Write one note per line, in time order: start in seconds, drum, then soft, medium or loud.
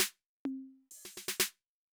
0.00 snare loud
0.45 closed hi-hat soft
0.45 high tom loud
0.91 hi-hat pedal medium
1.05 snare soft
1.17 snare medium
1.28 snare medium
1.40 snare loud